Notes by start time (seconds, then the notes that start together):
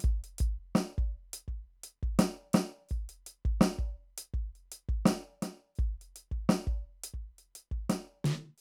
0.01 closed hi-hat, kick
0.24 closed hi-hat
0.39 closed hi-hat, kick
0.76 snare
0.98 kick
1.34 closed hi-hat
1.48 kick
1.84 closed hi-hat
2.03 kick
2.19 open hi-hat, snare
2.54 open hi-hat, snare
2.89 kick, hi-hat pedal
3.09 closed hi-hat
3.27 closed hi-hat
3.45 kick
3.61 snare
3.79 kick
4.18 closed hi-hat
4.34 kick
4.56 closed hi-hat
4.72 closed hi-hat
4.89 kick
5.06 open hi-hat, snare
5.11 snare
5.43 open hi-hat, snare
5.76 kick, hi-hat pedal
6.02 closed hi-hat
6.16 closed hi-hat
6.32 kick
6.50 snare
6.67 kick
7.04 closed hi-hat
7.14 kick
7.39 closed hi-hat
7.56 closed hi-hat
7.72 kick
7.90 snare, open hi-hat
8.25 snare, open hi-hat
8.58 hi-hat pedal